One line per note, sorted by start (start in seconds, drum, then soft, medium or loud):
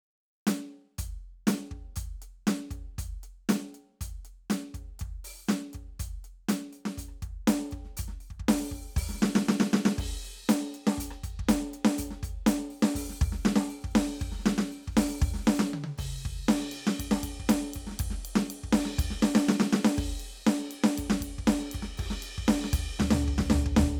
0.47 closed hi-hat loud
0.47 snare loud
0.98 closed hi-hat loud
0.98 kick medium
1.08 kick soft
1.47 closed hi-hat loud
1.47 snare loud
1.71 kick medium
1.96 closed hi-hat loud
1.96 kick medium
2.22 closed hi-hat medium
2.47 closed hi-hat loud
2.47 snare loud
2.71 kick medium
2.71 closed hi-hat medium
2.98 closed hi-hat loud
2.98 kick medium
3.23 closed hi-hat medium
3.49 closed hi-hat loud
3.49 snare loud
3.74 closed hi-hat medium
4.01 closed hi-hat loud
4.01 kick medium
4.25 closed hi-hat medium
4.50 closed hi-hat loud
4.50 snare loud
4.74 kick medium
4.74 closed hi-hat medium
4.99 kick medium
4.99 closed hi-hat medium
5.24 open hi-hat loud
5.48 closed hi-hat medium
5.48 snare loud
5.48 hi-hat pedal medium
5.73 kick soft
5.73 closed hi-hat medium
5.99 closed hi-hat loud
5.99 kick medium
6.24 closed hi-hat medium
6.49 closed hi-hat loud
6.49 snare loud
6.73 open hi-hat medium
6.85 snare medium
6.97 closed hi-hat medium
6.97 kick medium
7.08 cross-stick soft
7.22 kick medium
7.22 closed hi-hat medium
7.47 closed hi-hat loud
7.47 snare loud
7.71 kick medium
7.71 closed hi-hat medium
7.85 snare soft
7.97 closed hi-hat loud
7.97 kick medium
8.08 snare soft
8.20 open hi-hat soft
8.30 kick soft
8.39 kick medium
8.48 open hi-hat loud
8.48 snare loud
8.71 kick medium
8.71 open hi-hat soft
8.96 open hi-hat loud
8.96 kick loud
9.09 snare soft
9.14 snare soft
9.22 snare loud
9.35 snare loud
9.48 snare loud
9.60 snare loud
9.73 snare loud
9.85 snare loud
9.98 kick medium
9.98 hi-hat pedal soft
9.98 crash loud
10.24 closed hi-hat medium
10.49 closed hi-hat loud
10.49 snare loud
10.74 closed hi-hat medium
10.87 snare loud
10.97 closed hi-hat loud
10.97 kick medium
11.11 cross-stick medium
11.23 closed hi-hat medium
11.23 kick medium
11.39 kick medium
11.49 closed hi-hat loud
11.49 snare loud
11.73 closed hi-hat medium
11.85 snare loud
11.98 closed hi-hat loud
11.98 kick medium
12.11 snare soft
12.23 closed hi-hat medium
12.23 kick medium
12.46 closed hi-hat loud
12.46 snare loud
12.70 open hi-hat medium
12.82 snare loud
12.95 open hi-hat loud
12.95 kick medium
13.09 snare soft
13.21 open hi-hat medium
13.21 kick loud
13.32 snare soft
13.45 snare loud
13.56 snare loud
13.69 open hi-hat medium
13.84 kick medium
13.95 snare loud
13.95 crash medium
14.19 open hi-hat medium
14.19 kick medium
14.32 snare soft
14.39 snare soft
14.46 snare loud
14.58 snare loud
14.70 open hi-hat medium
14.87 kick medium
14.97 open hi-hat loud
14.97 snare loud
15.21 open hi-hat medium
15.21 kick loud
15.34 snare soft
15.39 snare soft
15.47 snare loud
15.54 hi-hat pedal medium
15.59 snare loud
15.73 high tom loud
15.84 high tom loud
15.98 kick medium
15.98 hi-hat pedal medium
15.98 crash medium
16.25 kick medium
16.48 snare loud
16.48 hi-hat pedal soft
16.48 ride loud
16.71 hi-hat pedal soft
16.71 ride medium
16.87 snare loud
16.99 kick medium
16.99 ride loud
17.11 snare loud
17.23 kick medium
17.23 ride loud
17.39 kick medium
17.49 snare loud
17.49 ride loud
17.74 kick medium
17.74 ride medium
17.87 snare medium
17.91 snare soft
17.99 kick loud
17.99 ride loud
18.10 snare soft
18.18 snare soft
18.25 ride loud
18.35 snare loud
18.50 ride loud
18.63 kick medium
18.73 snare loud
18.73 ride loud
18.85 snare medium
18.90 snare soft
18.98 kick loud
18.98 ride loud
19.10 snare medium
19.22 snare loud
19.35 snare loud
19.48 snare loud
19.60 snare loud
19.73 snare loud
19.84 snare loud
19.97 kick loud
19.97 crash medium
20.20 ride medium
20.46 snare loud
20.46 ride medium
20.71 ride medium
20.84 snare loud
20.98 kick medium
20.98 ride loud
21.10 snare loud
21.20 kick medium
21.20 ride loud
21.38 kick medium
21.47 snare loud
21.47 ride loud
21.71 kick medium
21.71 ride medium
21.82 snare medium
21.94 snare soft
21.94 ride loud
21.99 kick medium
22.10 snare medium
22.22 ride medium
22.38 kick medium
22.48 snare loud
22.48 ride loud
22.64 snare medium
22.73 kick loud
22.73 ride loud
22.99 snare loud
22.99 floor tom loud
23.11 snare loud
23.11 floor tom loud
23.28 kick medium
23.38 snare loud
23.38 floor tom loud
23.50 snare loud
23.50 floor tom loud
23.66 kick medium
23.76 snare loud
23.76 floor tom loud